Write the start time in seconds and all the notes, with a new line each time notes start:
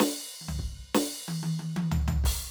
0.00 snare, crash
0.41 high tom
0.48 floor tom
0.59 kick
0.94 snare, crash
1.28 high tom
1.43 high tom
1.59 high tom
1.76 high tom
1.91 floor tom
2.08 floor tom
2.24 kick, crash